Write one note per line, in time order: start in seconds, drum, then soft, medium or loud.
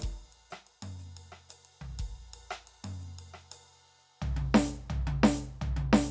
0.02 kick medium
0.02 ride loud
0.33 ride medium
0.50 cross-stick medium
0.50 hi-hat pedal medium
0.67 ride medium
0.82 mid tom medium
0.82 ride loud
0.99 hi-hat pedal soft
1.17 ride loud
1.32 cross-stick medium
1.49 hi-hat pedal medium
1.49 ride loud
1.65 ride medium
1.81 floor tom medium
1.99 kick medium
1.99 ride loud
2.34 ride loud
2.51 cross-stick medium
2.51 hi-hat pedal medium
2.67 ride medium
2.84 mid tom loud
2.84 ride loud
3.00 hi-hat pedal soft
3.19 ride loud
3.34 cross-stick medium
3.51 hi-hat pedal medium
3.51 ride loud
3.98 hi-hat pedal soft
4.22 floor tom loud
4.37 high tom loud
4.51 snare loud
4.51 hi-hat pedal soft
4.90 floor tom loud
5.07 high tom loud
5.23 snare loud
5.62 floor tom loud
5.76 high tom loud
5.93 snare loud